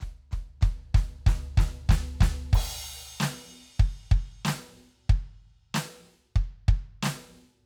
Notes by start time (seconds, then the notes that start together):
0.01 kick, snare, floor tom
0.32 kick, snare, floor tom
0.62 kick, snare, floor tom
0.95 kick, snare, floor tom
1.27 kick, snare, floor tom
1.58 kick, snare, floor tom
1.90 kick, snare, floor tom
2.21 kick, snare, floor tom
2.54 kick, crash
3.21 snare
3.24 snare
3.80 kick
4.12 kick
4.46 snare
4.49 snare
5.10 kick
5.75 snare
5.77 snare
6.37 kick
6.69 kick
7.03 snare
7.06 snare